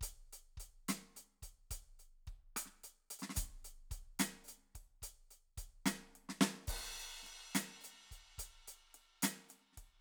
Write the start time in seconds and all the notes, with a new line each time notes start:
0.01 closed hi-hat, kick
0.33 closed hi-hat
0.57 closed hi-hat, kick
0.89 closed hi-hat, snare
1.15 closed hi-hat, snare
1.43 closed hi-hat, kick
1.71 closed hi-hat, kick
1.99 closed hi-hat
2.27 kick, closed hi-hat
2.56 closed hi-hat, cross-stick
2.66 snare
2.84 closed hi-hat
3.10 closed hi-hat
3.19 open hi-hat, snare
3.30 snare
3.35 closed hi-hat, kick, snare, hi-hat pedal
3.44 kick
3.65 closed hi-hat
3.90 closed hi-hat, kick, snare
4.19 closed hi-hat, snare
4.44 closed hi-hat, hi-hat pedal
4.75 kick, closed hi-hat
5.02 closed hi-hat, kick
5.31 closed hi-hat
5.58 closed hi-hat, kick
5.86 closed hi-hat, snare
6.15 closed hi-hat
6.29 snare
6.41 snare
6.67 kick, hi-hat pedal, crash
6.74 kick
7.00 closed hi-hat
7.23 snare, closed hi-hat
7.55 closed hi-hat, snare
7.81 closed hi-hat, hi-hat pedal
8.11 closed hi-hat, kick
8.38 closed hi-hat, kick
8.68 closed hi-hat
8.94 closed hi-hat
9.23 closed hi-hat, snare
9.49 snare, closed hi-hat, hi-hat pedal
9.73 snare
9.77 kick, closed hi-hat